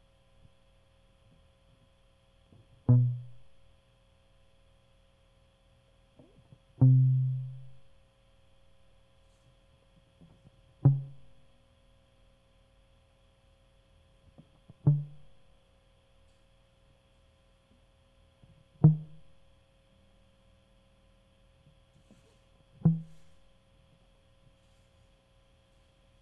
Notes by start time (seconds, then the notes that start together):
2.91 B2
6.83 C3
10.87 C#3
14.89 D3
18.86 D#3
22.87 E3